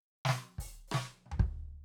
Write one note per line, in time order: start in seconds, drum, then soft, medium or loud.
0.25 snare medium
0.29 snare medium
0.58 open hi-hat medium
0.58 kick medium
0.88 cross-stick medium
0.88 hi-hat pedal soft
0.94 snare loud
1.26 high tom soft
1.32 floor tom medium
1.40 kick loud